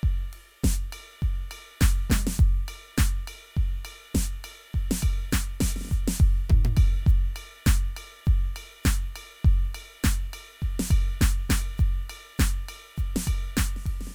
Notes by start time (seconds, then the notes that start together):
0.01 kick, hi-hat pedal, ride
0.33 ride
0.63 kick, snare, hi-hat pedal, ride
0.93 ride bell
1.21 kick, hi-hat pedal, ride
1.51 ride bell
1.81 kick, snare, hi-hat pedal, ride bell
2.10 kick, snare, mid tom
2.27 snare
2.37 kick, hi-hat pedal, ride
2.66 hi-hat pedal, ride bell
2.97 kick, snare, hi-hat pedal, ride
3.28 ride bell
3.55 kick, hi-hat pedal, ride
3.85 ride bell
4.14 kick, snare, hi-hat pedal, ride
4.44 ride bell
4.73 kick, hi-hat pedal, ride
4.91 snare
5.02 kick, ride bell
5.31 kick, snare, hi-hat pedal, ride
5.61 kick, snare, ride bell
5.76 snare
5.81 snare
5.85 snare
5.87 snare
5.89 kick, snare, hi-hat pedal, ride
6.08 snare
6.20 kick, ride
6.50 kick, floor tom
6.65 floor tom
6.77 kick, ride bell
7.07 kick, hi-hat pedal
7.36 ride bell
7.66 kick, snare, hi-hat pedal, ride
7.97 ride bell
8.25 kick, hi-hat pedal, ride
8.49 kick
8.56 ride bell
8.84 kick, snare, hi-hat pedal, ride
9.04 kick
9.16 ride bell
9.43 kick, hi-hat pedal, ride
9.75 closed hi-hat, ride bell
10.03 kick, snare, hi-hat pedal, ride
10.33 ride bell
10.60 kick, hi-hat pedal, ride
10.79 snare
10.89 kick, hi-hat pedal, ride bell
11.21 kick, snare, ride
11.50 kick, snare, ride bell
11.77 kick, hi-hat pedal, ride
12.10 ride bell
12.38 kick, snare, hi-hat pedal, ride
12.69 ride bell
12.97 kick, hi-hat pedal, ride
13.16 snare
13.27 kick, ride bell
13.57 kick, snare, hi-hat pedal, ride
13.76 snare
13.86 kick, ride
14.01 snare
14.07 snare
14.11 snare